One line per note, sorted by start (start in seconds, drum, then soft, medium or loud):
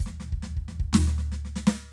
0.01 kick soft
0.01 hi-hat pedal medium
0.07 snare soft
0.07 floor tom medium
0.21 snare soft
0.21 floor tom soft
0.33 kick soft
0.43 snare soft
0.43 floor tom medium
0.57 kick soft
0.69 snare soft
0.69 floor tom medium
0.80 kick medium
0.94 snare loud
0.94 floor tom loud
1.08 snare soft
1.19 snare soft
1.33 snare soft
1.46 snare soft
1.56 snare medium
1.68 snare loud